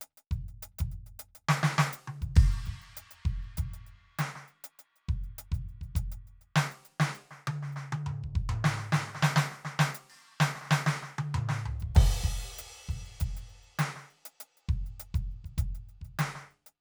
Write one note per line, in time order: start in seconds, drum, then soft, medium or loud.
0.01 closed hi-hat loud
0.17 closed hi-hat medium
0.31 kick medium
0.31 closed hi-hat soft
0.48 closed hi-hat soft
0.62 closed hi-hat loud
0.79 closed hi-hat loud
0.79 kick medium
0.91 closed hi-hat soft
1.06 closed hi-hat soft
1.19 closed hi-hat loud
1.35 closed hi-hat medium
1.49 snare loud
1.63 snare loud
1.78 snare loud
1.93 closed hi-hat loud
2.07 high tom medium
2.22 closed hi-hat medium
2.22 kick medium
2.36 kick loud
2.36 crash medium
2.52 closed hi-hat soft
2.66 closed hi-hat soft
2.66 kick soft
2.81 closed hi-hat soft
2.97 closed hi-hat loud
3.11 closed hi-hat medium
3.25 kick medium
3.25 closed hi-hat soft
3.43 closed hi-hat soft
3.57 closed hi-hat loud
3.57 kick medium
3.73 closed hi-hat medium
3.86 closed hi-hat soft
4.19 closed hi-hat loud
4.19 snare loud
4.35 snare soft
4.48 closed hi-hat soft
4.64 closed hi-hat loud
4.79 closed hi-hat medium
4.96 closed hi-hat soft
5.08 kick medium
5.08 closed hi-hat soft
5.24 closed hi-hat soft
5.38 closed hi-hat loud
5.52 closed hi-hat medium
5.52 kick medium
5.69 closed hi-hat soft
5.81 kick soft
5.81 closed hi-hat soft
5.95 closed hi-hat loud
5.95 kick medium
6.12 closed hi-hat medium
6.27 closed hi-hat soft
6.41 closed hi-hat soft
6.56 snare loud
6.71 closed hi-hat soft
6.85 closed hi-hat medium
7.00 snare loud
7.15 closed hi-hat medium
7.31 snare soft
7.47 high tom loud
7.62 snare soft
7.72 hi-hat pedal soft
7.76 snare soft
7.92 high tom loud
8.06 mid tom medium
8.23 kick soft
8.35 kick medium
8.49 mid tom loud
8.64 snare loud
8.77 snare medium
8.92 snare loud
9.07 snare soft
9.15 snare medium
9.22 snare loud
9.36 snare loud
9.51 snare soft
9.65 snare medium
9.79 snare loud
9.95 closed hi-hat loud
10.10 crash soft
10.40 snare loud
10.55 snare soft
10.61 snare soft
10.65 snare soft
10.71 snare loud
10.86 snare loud
11.02 snare medium
11.18 high tom loud
11.34 mid tom loud
11.49 snare medium
11.65 floor tom medium
11.80 closed hi-hat medium
11.80 kick soft
11.95 kick loud
11.95 crash loud
12.24 closed hi-hat soft
12.24 kick medium
12.43 closed hi-hat soft
12.59 closed hi-hat loud
12.75 closed hi-hat soft
12.89 kick medium
12.89 closed hi-hat soft
13.05 closed hi-hat soft
13.20 closed hi-hat loud
13.20 kick medium
13.37 closed hi-hat medium
13.49 closed hi-hat soft
13.63 closed hi-hat soft
13.79 closed hi-hat loud
13.79 snare loud
13.96 snare soft
14.10 closed hi-hat soft
14.25 closed hi-hat loud
14.40 closed hi-hat loud
14.57 closed hi-hat soft
14.69 kick medium
14.69 closed hi-hat soft
14.86 closed hi-hat soft
15.00 closed hi-hat loud
15.14 kick medium
15.14 closed hi-hat medium
15.31 closed hi-hat soft
15.44 kick soft
15.44 closed hi-hat soft
15.58 closed hi-hat loud
15.58 kick medium
15.75 closed hi-hat soft
15.89 closed hi-hat soft
16.01 kick soft
16.01 closed hi-hat soft
16.19 closed hi-hat loud
16.19 snare loud
16.35 snare soft
16.51 closed hi-hat soft
16.66 closed hi-hat medium